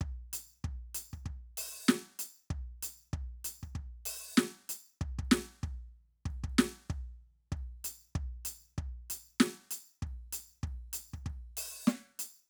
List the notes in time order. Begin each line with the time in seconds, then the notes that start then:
0.01 kick
0.33 percussion
0.64 kick
0.95 percussion
1.13 kick
1.26 kick
1.57 percussion
1.88 snare, percussion
2.19 percussion
2.51 kick
2.83 percussion
3.13 kick
3.45 percussion
3.63 kick
3.75 kick
4.06 percussion
4.37 snare, percussion
4.69 percussion
5.01 kick
5.19 kick
5.25 crash
5.32 snare
5.63 kick
6.26 kick, snare, crash
6.31 ride
6.44 kick
6.50 crash, ride
6.59 snare
6.90 kick
7.52 kick
7.57 crash
7.85 percussion
8.15 kick
8.45 percussion
8.78 kick
9.10 percussion
9.40 snare, percussion
9.71 percussion
10.02 kick
10.07 crash
10.33 percussion
10.63 kick
10.67 crash
10.93 percussion
11.14 kick
11.26 kick
11.30 crash
11.57 percussion
11.87 snare, percussion
12.19 percussion